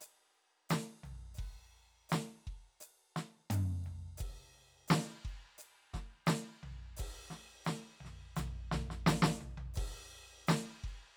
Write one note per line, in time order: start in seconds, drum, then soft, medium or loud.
0.01 hi-hat pedal medium
0.01 ride soft
0.34 ride soft
0.70 snare loud
0.70 hi-hat pedal medium
0.70 ride medium
1.04 floor tom medium
1.04 ride soft
1.35 hi-hat pedal soft
1.35 crash soft
1.39 kick soft
2.09 snare loud
2.09 hi-hat pedal medium
2.09 ride medium
2.47 kick soft
2.81 hi-hat pedal medium
2.81 ride medium
3.16 snare medium
3.16 ride soft
3.50 hi-hat pedal medium
3.50 mid tom loud
3.50 ride medium
3.84 floor tom soft
3.84 ride soft
4.18 kick soft
4.18 hi-hat pedal medium
4.18 crash soft
4.88 snare loud
4.88 hi-hat pedal medium
4.88 ride soft
5.25 kick soft
5.25 ride soft
5.58 hi-hat pedal medium
5.58 ride soft
5.94 kick soft
5.94 snare soft
6.27 snare loud
6.27 hi-hat pedal medium
6.27 ride soft
6.63 floor tom medium
6.97 kick soft
6.97 hi-hat pedal medium
6.97 crash medium
7.31 snare soft
7.65 snare medium
7.65 hi-hat pedal soft
7.65 ride soft
8.01 floor tom soft
8.05 snare soft
8.36 snare medium
8.36 floor tom medium
8.36 hi-hat pedal medium
8.72 snare medium
8.72 floor tom medium
8.91 snare soft
9.07 snare loud
9.07 hi-hat pedal medium
9.23 snare loud
9.41 floor tom medium
9.58 floor tom medium
9.74 kick medium
9.74 hi-hat pedal soft
9.74 crash medium
10.48 snare loud
10.48 hi-hat pedal medium
10.48 ride soft
10.84 kick soft
10.89 ride soft